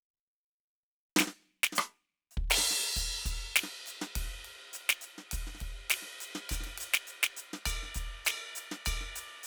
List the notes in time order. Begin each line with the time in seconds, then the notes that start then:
1.16 snare, hi-hat pedal
1.18 snare
1.20 snare
1.27 snare
1.40 snare
1.42 snare
1.63 snare
1.72 snare, hi-hat pedal
1.78 cross-stick
2.31 hi-hat pedal
2.37 kick
2.44 kick
2.47 kick, snare, crash
2.58 snare
2.70 snare
2.79 snare
2.85 snare
2.96 open hi-hat, kick
3.05 kick
3.25 closed hi-hat, kick
3.32 kick
3.55 snare, ride
3.63 snare
3.86 hi-hat pedal, ride
4.01 snare
4.15 kick, hi-hat pedal, ride
4.22 kick, snare
4.25 kick, snare
4.29 snare
4.44 ride
4.73 hi-hat pedal, ride
4.89 snare
5.01 hi-hat pedal, ride
5.18 snare
5.31 kick, hi-hat pedal, ride
5.47 snare
5.54 snare, hi-hat pedal
5.60 kick, ride
5.89 snare, hi-hat pedal, ride
6.02 snare
6.20 hi-hat pedal, ride
6.35 snare
6.49 kick, snare, hi-hat pedal, ride bell
6.59 kick, snare
6.63 snare, ride
6.77 hi-hat pedal, ride
6.93 snare
7.07 hi-hat pedal, ride
7.23 snare
7.36 hi-hat pedal, ride
7.53 snare
7.65 kick, hi-hat pedal, ride bell
7.83 snare
7.88 snare
7.94 kick, hi-hat pedal, ride
8.25 snare, hi-hat pedal, ride bell
8.55 hi-hat pedal, ride
8.71 snare
8.85 kick, hi-hat pedal, ride bell
8.93 kick
8.96 kick
9.00 snare
9.15 hi-hat pedal, ride
9.43 hi-hat pedal